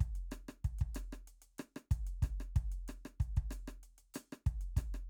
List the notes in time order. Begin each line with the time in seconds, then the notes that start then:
0.01 kick, closed hi-hat
0.16 closed hi-hat
0.32 cross-stick, closed hi-hat
0.49 cross-stick
0.65 kick, closed hi-hat
0.79 kick, closed hi-hat
0.95 cross-stick, closed hi-hat
1.13 cross-stick
1.28 closed hi-hat
1.42 closed hi-hat
1.59 cross-stick, closed hi-hat
1.77 cross-stick
1.91 kick, closed hi-hat
2.07 closed hi-hat
2.23 kick, cross-stick, closed hi-hat
2.41 cross-stick
2.56 kick, closed hi-hat
2.72 closed hi-hat
2.89 cross-stick, closed hi-hat
3.06 cross-stick
3.20 kick, closed hi-hat
3.37 kick, closed hi-hat
3.51 cross-stick, closed hi-hat
3.68 cross-stick
3.84 closed hi-hat
3.99 closed hi-hat
4.15 closed hi-hat, cross-stick
4.33 cross-stick
4.47 kick, closed hi-hat
4.62 closed hi-hat
4.77 kick, cross-stick, closed hi-hat
4.95 cross-stick